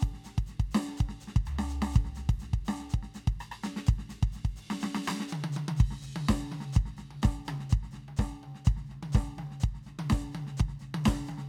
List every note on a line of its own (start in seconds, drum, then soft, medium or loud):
0.01 kick medium
0.01 hi-hat pedal medium
0.01 ride medium
0.14 snare soft
0.25 snare soft
0.25 hi-hat pedal medium
0.25 ride medium
0.39 kick medium
0.39 ride medium
0.47 snare soft
0.47 hi-hat pedal medium
0.60 kick medium
0.60 ride medium
0.72 snare loud
0.72 hi-hat pedal medium
0.72 ride medium
0.88 snare soft
0.98 kick medium
0.98 hi-hat pedal medium
0.98 ride medium
1.09 snare medium
1.21 hi-hat pedal medium
1.21 ride medium
1.28 snare soft
1.37 kick loud
1.46 floor tom loud
1.46 hi-hat pedal medium
1.59 snare medium
1.69 hi-hat pedal medium
1.69 ride medium
1.83 snare loud
1.93 kick loud
1.93 hi-hat pedal medium
1.93 ride medium
2.05 snare soft
2.16 snare soft
2.16 hi-hat pedal medium
2.16 ride soft
2.30 kick loud
2.30 ride medium
2.40 snare soft
2.40 hi-hat pedal medium
2.54 kick medium
2.54 ride soft
2.66 snare loud
2.66 hi-hat pedal medium
2.66 ride medium
2.80 snare soft
2.90 hi-hat pedal medium
2.90 ride soft
2.94 kick medium
3.04 snare soft
3.15 snare soft
3.15 hi-hat pedal medium
3.15 ride soft
3.28 kick medium
3.28 ride medium
3.40 cross-stick medium
3.40 hi-hat pedal medium
3.40 ride medium
3.52 cross-stick medium
3.64 snare medium
3.64 hi-hat pedal medium
3.77 snare medium
3.87 kick loud
3.87 hi-hat pedal medium
3.87 ride medium
3.99 snare soft
4.10 snare soft
4.10 hi-hat pedal medium
4.10 ride medium
4.23 kick loud
4.23 ride medium
4.33 snare soft
4.33 hi-hat pedal medium
4.45 kick medium
4.45 ride medium
4.57 hi-hat pedal medium
4.57 ride medium
4.71 snare medium
4.81 snare medium
4.81 hi-hat pedal medium
4.95 snare loud
5.04 snare loud
5.04 hi-hat pedal medium
5.20 snare medium
5.29 hi-hat pedal medium
5.33 high tom medium
5.45 high tom loud
5.53 hi-hat pedal medium
5.57 high tom loud
5.69 high tom loud
5.77 kick loud
5.77 hi-hat pedal medium
5.77 crash medium
5.91 snare medium
6.02 hi-hat pedal medium
6.17 high tom loud
6.29 kick medium
6.29 snare loud
6.29 hi-hat pedal medium
6.40 high tom medium
6.47 hi-hat pedal soft
6.52 high tom medium
6.61 snare soft
6.73 kick loud
6.73 hi-hat pedal loud
6.73 high tom medium
6.86 snare soft
6.97 snare soft
6.97 hi-hat pedal medium
6.97 high tom medium
7.11 high tom medium
7.23 kick loud
7.23 snare loud
7.23 hi-hat pedal medium
7.38 high tom soft
7.46 hi-hat pedal medium
7.46 high tom medium
7.60 snare soft
7.70 kick loud
7.70 hi-hat pedal medium
7.74 high tom medium
7.84 snare soft
7.92 hi-hat pedal medium
7.98 high tom medium
8.09 high tom medium
8.17 kick medium
8.17 snare loud
8.17 hi-hat pedal medium
8.32 high tom medium
8.44 high tom medium
8.55 snare soft
8.65 kick loud
8.65 hi-hat pedal loud
8.65 high tom medium
8.77 snare soft
8.86 snare soft
8.86 hi-hat pedal soft
8.92 high tom medium
9.03 high tom medium
9.13 kick loud
9.13 snare loud
9.13 hi-hat pedal medium
9.28 high tom medium
9.35 hi-hat pedal soft
9.39 high tom medium
9.52 snare soft
9.61 kick medium
9.61 hi-hat pedal medium
9.61 high tom medium
9.75 snare soft
9.84 snare soft
9.84 hi-hat pedal soft
9.84 high tom medium
10.00 high tom loud
10.10 kick medium
10.10 snare loud
10.10 hi-hat pedal medium
10.23 high tom medium
10.33 hi-hat pedal soft
10.33 high tom loud
10.47 snare soft
10.58 kick medium
10.58 hi-hat pedal medium
10.58 high tom loud
10.69 snare soft
10.80 snare soft
10.80 hi-hat pedal medium
10.95 high tom loud
11.05 kick medium
11.05 snare loud
11.05 hi-hat pedal medium
11.12 snare soft
11.18 high tom medium
11.27 hi-hat pedal medium
11.27 high tom medium
11.38 snare soft